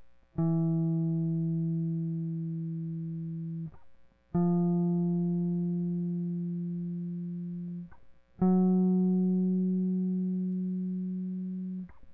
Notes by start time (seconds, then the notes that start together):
0.39 E3
4.35 F3
8.42 F#3